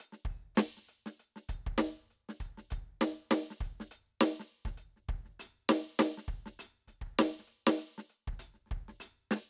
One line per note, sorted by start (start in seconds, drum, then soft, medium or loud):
0.00 closed hi-hat medium
0.12 snare soft
0.25 open hi-hat soft
0.25 kick medium
0.55 snare loud
0.55 hi-hat pedal medium
0.59 closed hi-hat medium
0.77 snare soft
0.89 closed hi-hat soft
1.06 closed hi-hat medium
1.06 snare soft
1.20 closed hi-hat soft
1.36 snare soft
1.49 closed hi-hat medium
1.49 kick medium
1.66 kick medium
1.78 open hi-hat medium
1.78 snare loud
1.78 hi-hat pedal medium
2.10 closed hi-hat soft
2.29 snare soft
2.29 closed hi-hat soft
2.40 closed hi-hat medium
2.40 kick soft
2.58 snare soft
2.70 closed hi-hat medium
2.70 kick medium
3.01 closed hi-hat medium
3.01 snare loud
3.31 closed hi-hat medium
3.31 snare loud
3.50 snare soft
3.60 closed hi-hat soft
3.60 kick medium
3.80 snare soft
3.91 closed hi-hat medium
4.21 closed hi-hat medium
4.21 snare loud
4.40 snare soft
4.65 kick medium
4.65 snare soft
4.77 closed hi-hat medium
4.96 snare soft
5.09 kick medium
5.09 closed hi-hat soft
5.25 snare soft
5.29 snare soft
5.40 closed hi-hat loud
5.69 closed hi-hat medium
5.69 snare loud
5.99 closed hi-hat loud
5.99 snare loud
6.17 snare soft
6.28 kick medium
6.28 closed hi-hat soft
6.46 snare soft
6.59 closed hi-hat loud
6.88 closed hi-hat soft
6.88 kick soft
6.88 snare soft
7.01 kick soft
7.19 closed hi-hat loud
7.19 snare loud
7.39 snare soft
7.48 closed hi-hat soft
7.67 snare loud
7.78 closed hi-hat medium
7.98 snare soft
8.10 closed hi-hat soft
8.27 kick medium
8.32 snare soft
8.39 closed hi-hat loud
8.54 snare soft
8.66 snare soft
8.66 closed hi-hat soft
8.71 kick medium
8.88 snare soft
9.00 closed hi-hat loud
9.31 closed hi-hat medium
9.31 snare medium
9.36 snare soft